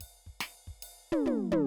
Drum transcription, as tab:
Ride      |x--x--x-----|
Snare     |---o--------|
High tom  |--------oo-o|
Floor tom |--------oo-o|
Kick      |g-g--g------|